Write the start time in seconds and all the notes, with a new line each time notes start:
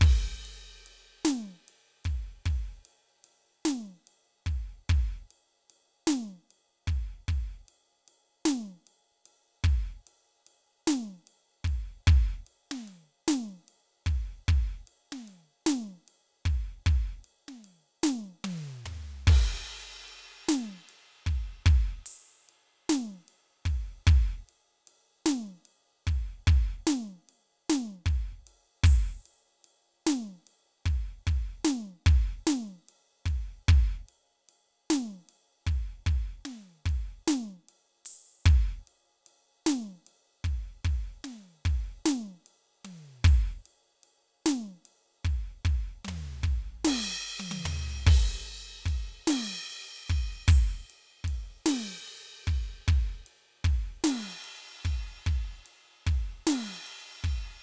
0.01 kick, ride, crash
0.45 ride
0.86 ride
1.25 snare, ride
1.68 ride
2.04 kick, ride
2.46 kick, ride
2.85 ride
3.24 ride
3.65 snare, ride
4.07 ride
4.46 kick, ride
4.89 kick, ride
5.30 ride
5.70 ride
6.07 snare, ride
6.50 ride
6.87 kick, ride
7.28 kick, ride
7.68 ride
8.08 ride
8.45 snare, ride
8.87 ride
9.26 ride
9.64 kick, ride
10.07 ride
10.46 ride
10.87 snare, ride
11.27 ride
11.64 kick, ride
12.07 kick, ride
12.46 ride
12.71 snare
12.88 ride
13.28 snare, ride
13.44 snare
13.68 ride
14.06 kick, ride
14.48 kick, ride
14.87 ride
15.12 snare
15.28 ride
15.66 snare, ride
15.82 snare
16.08 ride
16.45 kick, ride
16.86 kick, ride
17.16 snare
17.24 ride
17.48 snare
17.64 ride
18.03 snare, ride
18.44 high tom, ride
18.86 floor tom
19.27 kick, crash
19.70 ride
20.08 ride
20.48 snare, ride
20.89 ride
21.26 kick, ride
21.66 kick, ride
22.06 open hi-hat, ride
22.46 hi-hat pedal, ride
22.89 snare, ride
23.28 ride
23.65 kick, ride
24.07 kick, ride
24.49 ride
24.87 ride
25.26 snare, ride
25.39 snare
25.65 ride
26.07 kick, ride
26.47 kick, ride
26.87 snare, ride
27.27 snare, ride
27.70 snare
28.06 kick, ride
28.32 kick
28.47 ride
28.84 open hi-hat, kick, ride
29.25 ride
29.64 ride
30.05 snare, hi-hat pedal, ride
30.47 ride
30.86 kick, ride
31.27 kick, ride
31.64 snare
32.03 kick, snare
32.09 ride
32.47 snare, ride
32.88 ride
33.26 kick, ride
33.68 kick, ride
34.09 ride
34.49 ride
34.90 snare, ride
35.03 snare
35.29 ride
35.66 kick, ride
36.06 kick, ride
36.45 snare, ride
36.86 kick, ride
37.27 snare
37.41 snare
37.69 ride
38.05 open hi-hat, ride
38.45 kick, hi-hat pedal, ride
38.87 ride
39.26 ride
39.66 snare, ride
39.80 snare
39.82 snare
40.06 ride
40.44 kick, ride
40.84 kick, ride
41.24 snare, ride
41.65 kick, ride
42.05 snare, ride
42.46 ride
42.84 high tom, ride
43.24 open hi-hat, kick, ride
43.66 ride
44.03 ride
44.44 snare, hi-hat pedal, ride
44.85 ride
45.24 kick, ride
45.65 kick, ride
46.05 floor tom, high tom
46.43 kick, ride
46.84 snare, crash
47.25 hi-hat pedal
47.40 high tom
47.51 high tom
47.65 floor tom, hi-hat pedal
48.06 kick, ride, crash
48.50 ride
48.86 kick, ride
49.27 snare, crash
49.70 ride
50.09 kick, ride
50.48 open hi-hat, kick, ride
50.90 ride
51.24 kick, ride
51.62 snare, hi-hat pedal
51.66 crash
52.08 ride
52.47 kick, ride
52.88 kick, ride
53.26 ride
53.64 kick, ride
54.04 snare, crash
54.44 ride
54.85 kick, ride
55.26 kick, ride
55.66 ride
56.06 kick, ride
56.47 snare, crash
56.87 ride
57.24 kick, ride